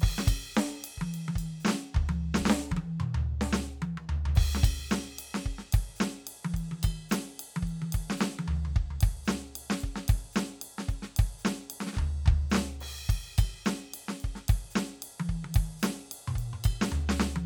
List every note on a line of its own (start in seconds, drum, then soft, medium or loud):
0.01 kick loud
0.01 crash loud
0.18 snare loud
0.28 kick loud
0.28 ride bell loud
0.54 snare loud
0.54 hi-hat pedal medium
0.84 ride loud
0.98 kick soft
0.98 high tom loud
1.14 ride medium
1.28 high tom loud
1.36 kick medium
1.36 ride bell medium
1.60 hi-hat pedal soft
1.65 snare loud
1.68 snare loud
1.95 kick loud
1.95 floor tom loud
2.09 cross-stick soft
2.09 high tom loud
2.35 snare loud
2.40 kick soft
2.46 snare loud
2.50 snare loud
2.71 kick medium
2.71 high tom loud
2.77 high tom loud
3.00 mid tom loud
3.15 floor tom loud
3.41 snare medium
3.53 snare loud
3.82 high tom loud
3.98 high tom medium
4.09 floor tom loud
4.26 floor tom loud
4.36 kick loud
4.36 crash loud
4.55 snare medium
4.64 kick loud
4.64 ride bell loud
4.90 snare loud
4.90 hi-hat pedal medium
5.19 ride loud
5.35 snare loud
5.46 kick medium
5.59 snare medium
5.73 kick loud
5.73 ride loud
5.96 hi-hat pedal medium
6.01 snare loud
6.27 ride loud
6.45 high tom loud
6.54 kick medium
6.54 ride medium
6.72 high tom loud
6.83 kick loud
6.83 ride bell loud
7.09 snare loud
7.09 hi-hat pedal medium
7.09 ride loud
7.40 ride loud
7.56 high tom loud
7.63 kick medium
7.67 ride soft
7.82 high tom loud
7.93 kick medium
7.93 ride loud
8.10 snare loud
8.18 snare loud
8.18 hi-hat pedal medium
8.39 high tom loud
8.48 floor tom loud
8.65 floor tom medium
8.76 kick loud
8.91 floor tom medium
9.01 kick loud
9.01 ride loud
9.25 snare loud
9.25 hi-hat pedal medium
9.56 ride loud
9.70 snare loud
9.81 kick medium
9.81 ride medium
9.96 snare medium
10.08 kick loud
10.08 ride loud
10.33 snare loud
10.33 hi-hat pedal medium
10.62 ride loud
10.79 snare medium
10.89 kick medium
10.89 ride soft
11.03 snare medium
11.17 kick loud
11.17 ride loud
11.39 hi-hat pedal soft
11.45 snare loud
11.70 ride loud
11.81 snare medium
11.87 snare medium
11.93 kick medium
11.93 snare medium
11.99 floor tom loud
12.26 kick loud
12.26 floor tom loud
12.50 snare loud
12.50 hi-hat pedal medium
12.55 snare loud
12.81 crash loud
13.09 kick loud
13.09 ride loud
13.38 kick loud
13.38 ride bell loud
13.65 snare loud
13.65 hi-hat pedal medium
13.94 ride loud
14.09 snare medium
14.21 kick medium
14.21 ride medium
14.36 snare medium
14.49 kick loud
14.49 ride loud
14.71 hi-hat pedal medium
14.76 snare loud
15.02 ride loud
15.20 high tom loud
15.29 kick medium
15.45 high tom medium
15.55 kick loud
15.55 ride loud
15.80 snare loud
15.80 hi-hat pedal medium
15.80 ride loud
16.12 ride loud
16.28 mid tom loud
16.36 kick medium
16.36 ride medium
16.53 mid tom medium
16.64 kick loud
16.64 ride bell loud
16.82 snare loud
16.88 hi-hat pedal medium
16.92 floor tom loud
17.09 snare loud
17.20 snare loud
17.36 high tom loud